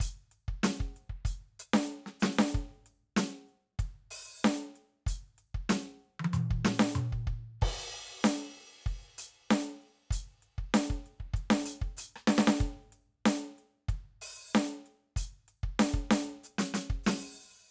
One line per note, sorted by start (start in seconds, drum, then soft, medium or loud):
0.01 closed hi-hat loud
0.01 kick medium
0.32 closed hi-hat soft
0.49 kick medium
0.64 closed hi-hat loud
0.64 snare loud
0.81 kick medium
0.97 closed hi-hat soft
1.10 kick soft
1.26 closed hi-hat medium
1.26 kick medium
1.60 open hi-hat loud
1.60 hi-hat pedal medium
1.74 snare loud
1.91 snare soft
2.07 snare soft
2.21 snare loud
2.21 hi-hat pedal medium
2.39 snare loud
2.55 kick medium
2.87 closed hi-hat soft
3.17 closed hi-hat loud
3.17 snare loud
3.49 closed hi-hat soft
3.80 kick medium
3.80 closed hi-hat medium
4.11 open hi-hat loud
4.45 closed hi-hat medium
4.45 snare loud
4.45 hi-hat pedal medium
4.76 closed hi-hat soft
5.07 closed hi-hat loud
5.07 kick medium
5.39 closed hi-hat soft
5.55 kick medium
5.70 open hi-hat loud
5.70 snare loud
5.70 hi-hat pedal medium
6.20 high tom medium
6.25 high tom loud
6.34 hi-hat pedal medium
6.34 mid tom loud
6.51 kick medium
6.66 snare loud
6.80 snare loud
6.95 hi-hat pedal medium
6.95 mid tom loud
7.13 kick medium
7.28 kick medium
7.61 kick soft
7.61 crash loud
7.63 kick loud
8.25 closed hi-hat loud
8.25 snare loud
8.56 closed hi-hat soft
8.87 kick medium
8.87 closed hi-hat soft
9.19 open hi-hat loud
9.51 snare loud
9.51 closed hi-hat medium
9.51 hi-hat pedal medium
9.82 closed hi-hat soft
10.11 closed hi-hat loud
10.11 kick medium
10.43 closed hi-hat soft
10.59 kick medium
10.75 closed hi-hat loud
10.75 snare loud
10.91 kick medium
11.07 closed hi-hat soft
11.21 kick soft
11.34 kick medium
11.34 closed hi-hat medium
11.51 snare loud
11.66 closed hi-hat loud
11.82 kick medium
11.98 closed hi-hat loud
11.98 hi-hat pedal medium
12.17 cross-stick medium
12.28 snare loud
12.39 snare loud
12.48 snare loud
12.61 kick medium
12.93 closed hi-hat soft
13.26 closed hi-hat loud
13.26 snare loud
13.59 closed hi-hat soft
13.89 kick medium
13.89 closed hi-hat medium
14.22 open hi-hat loud
14.54 snare loud
14.54 closed hi-hat medium
14.54 hi-hat pedal medium
14.87 closed hi-hat soft
15.17 closed hi-hat loud
15.17 kick medium
15.49 closed hi-hat soft
15.64 kick medium
15.80 closed hi-hat loud
15.80 snare loud
15.95 kick medium
16.12 open hi-hat loud
16.12 snare loud
16.44 hi-hat pedal medium
16.59 closed hi-hat loud
16.59 snare loud
16.75 closed hi-hat loud
16.75 snare medium
16.91 kick medium
17.04 open hi-hat loud
17.04 snare loud
17.04 hi-hat pedal soft